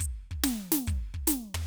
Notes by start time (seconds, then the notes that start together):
0.03 closed hi-hat, kick
0.31 kick
0.44 closed hi-hat, snare
0.72 snare
0.86 closed hi-hat, kick, snare
1.14 kick
1.27 closed hi-hat, snare
1.54 floor tom